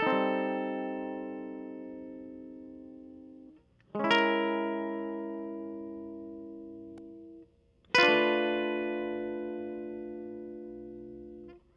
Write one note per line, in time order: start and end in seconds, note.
0.00 3.62 D#4
0.00 2.70 A4
0.07 3.53 C4
0.13 3.54 G3
3.96 7.42 G#3
4.00 7.20 C#4
4.05 7.48 E4
4.11 7.45 A#4
7.95 11.61 F4
7.95 11.55 B4
8.03 11.55 D4
8.09 11.58 A3